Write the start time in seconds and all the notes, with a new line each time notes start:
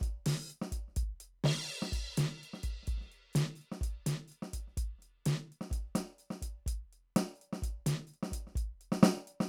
0.01 closed hi-hat, kick
0.26 open hi-hat, snare
0.50 open hi-hat, hi-hat pedal
0.62 snare
0.72 closed hi-hat, kick
0.88 snare
0.96 closed hi-hat, kick
1.03 kick
1.20 closed hi-hat
1.44 snare, crash
1.64 hi-hat pedal
1.69 closed hi-hat
1.82 snare
1.92 closed hi-hat, kick
2.17 closed hi-hat, snare
2.43 closed hi-hat
2.53 snare
2.63 closed hi-hat, kick
2.83 snare
2.87 closed hi-hat, kick
2.93 kick
2.97 snare
3.01 snare
3.06 snare
3.12 closed hi-hat
3.33 closed hi-hat, snare, hi-hat pedal
3.55 hi-hat pedal
3.61 closed hi-hat
3.72 snare
3.81 closed hi-hat, kick, snare
4.06 closed hi-hat, snare
4.28 closed hi-hat, hi-hat pedal
4.42 snare
4.53 closed hi-hat, kick
4.67 snare
4.77 closed hi-hat, kick
4.99 snare, closed hi-hat
5.25 closed hi-hat, snare
5.52 closed hi-hat
5.61 snare
5.70 closed hi-hat, kick, snare
5.95 closed hi-hat, snare
6.18 closed hi-hat, hi-hat pedal
6.30 snare
6.40 closed hi-hat, kick, snare
6.66 closed hi-hat, kick
6.93 closed hi-hat
7.16 closed hi-hat, snare
7.35 hi-hat pedal
7.41 closed hi-hat
7.53 snare
7.62 closed hi-hat, kick
7.86 open hi-hat, snare
7.99 snare
8.07 hi-hat pedal
8.13 closed hi-hat
8.23 snare
8.31 closed hi-hat, kick, snare
8.47 snare
8.52 kick, snare
8.57 closed hi-hat
8.81 closed hi-hat
8.92 snare
9.03 snare
9.17 snare
9.27 closed hi-hat
9.40 snare